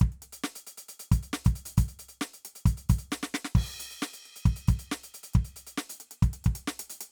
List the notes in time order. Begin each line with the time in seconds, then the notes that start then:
0.01 kick, closed hi-hat
0.13 closed hi-hat
0.23 closed hi-hat
0.33 closed hi-hat
0.45 snare
0.56 closed hi-hat
0.68 closed hi-hat
0.78 closed hi-hat
0.89 closed hi-hat
1.00 closed hi-hat
1.12 closed hi-hat, kick
1.24 closed hi-hat
1.34 snare
1.46 closed hi-hat, kick
1.56 closed hi-hat
1.78 closed hi-hat, kick
1.89 closed hi-hat
2.00 closed hi-hat
2.09 closed hi-hat
2.22 snare
2.34 closed hi-hat
2.46 closed hi-hat
2.56 closed hi-hat
2.66 closed hi-hat, kick
2.78 closed hi-hat
2.90 closed hi-hat, kick
2.99 closed hi-hat
3.12 snare, hi-hat pedal
3.24 snare
3.35 snare
3.46 snare
3.56 kick, crash
3.67 closed hi-hat
3.81 closed hi-hat
3.92 closed hi-hat
4.03 snare
4.14 closed hi-hat
4.26 closed hi-hat
4.37 closed hi-hat
4.46 kick, closed hi-hat
4.57 closed hi-hat
4.69 closed hi-hat, kick
4.80 closed hi-hat
4.92 snare
5.04 closed hi-hat
5.15 closed hi-hat
5.24 closed hi-hat
5.35 kick, closed hi-hat
5.46 closed hi-hat
5.57 closed hi-hat
5.68 closed hi-hat
5.79 snare
5.90 closed hi-hat
6.01 closed hi-hat
6.12 closed hi-hat
6.23 kick, closed hi-hat
6.45 kick, closed hi-hat
6.56 closed hi-hat
6.68 snare
6.80 closed hi-hat
6.91 closed hi-hat
7.02 closed hi-hat